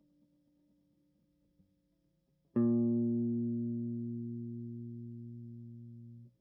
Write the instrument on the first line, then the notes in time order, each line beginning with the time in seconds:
electric guitar
2.59 A#2